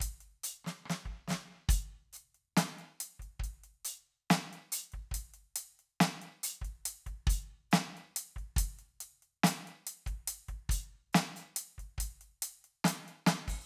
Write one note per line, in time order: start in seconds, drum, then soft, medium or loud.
0.01 kick medium
0.01 closed hi-hat loud
0.21 closed hi-hat soft
0.44 closed hi-hat loud
0.65 cross-stick soft
0.65 snare medium
0.86 cross-stick medium
0.91 snare loud
1.06 kick soft
1.28 snare medium
1.31 snare loud
1.69 open hi-hat loud
1.69 kick loud
2.14 closed hi-hat soft
2.14 hi-hat pedal medium
2.35 closed hi-hat soft
2.57 snare loud
2.57 closed hi-hat loud
2.79 closed hi-hat soft
3.01 closed hi-hat loud
3.20 kick soft
3.20 closed hi-hat soft
3.40 kick medium
3.45 closed hi-hat medium
3.64 closed hi-hat soft
3.86 open hi-hat loud
4.31 snare loud
4.31 closed hi-hat medium
4.31 hi-hat pedal medium
4.54 closed hi-hat soft
4.73 closed hi-hat loud
4.93 kick soft
4.93 closed hi-hat soft
5.12 kick medium
5.12 closed hi-hat loud
5.35 closed hi-hat soft
5.57 closed hi-hat loud
5.80 closed hi-hat soft
6.01 snare loud
6.01 closed hi-hat medium
6.22 closed hi-hat soft
6.44 closed hi-hat loud
6.62 kick medium
6.62 closed hi-hat soft
6.86 closed hi-hat loud
7.07 kick soft
7.07 closed hi-hat soft
7.28 open hi-hat medium
7.28 kick loud
7.72 snare loud
7.72 hi-hat pedal medium
7.82 snare soft
7.98 closed hi-hat soft
8.17 closed hi-hat loud
8.37 kick soft
8.37 closed hi-hat soft
8.57 kick medium
8.57 closed hi-hat loud
8.80 closed hi-hat soft
9.01 closed hi-hat medium
9.23 closed hi-hat soft
9.44 snare loud
9.44 closed hi-hat loud
9.68 closed hi-hat soft
9.87 closed hi-hat loud
10.07 kick medium
10.07 closed hi-hat soft
10.28 closed hi-hat loud
10.49 kick soft
10.49 closed hi-hat soft
10.70 open hi-hat loud
10.70 kick medium
11.14 snare loud
11.14 closed hi-hat medium
11.14 hi-hat pedal soft
11.22 snare soft
11.37 closed hi-hat soft
11.57 closed hi-hat loud
11.79 kick soft
11.79 closed hi-hat soft
11.99 kick medium
11.99 closed hi-hat loud
12.22 closed hi-hat soft
12.43 closed hi-hat loud
12.65 closed hi-hat soft
12.85 snare loud
12.85 closed hi-hat loud
13.09 closed hi-hat soft
13.27 snare loud
13.27 closed hi-hat soft
13.35 snare soft
13.48 open hi-hat medium
13.48 kick medium